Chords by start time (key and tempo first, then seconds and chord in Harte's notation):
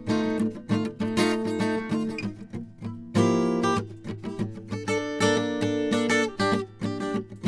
C major, 97 BPM
0.07 F:7(*5)/b7
2.54 C:(5,2,b7,4)/4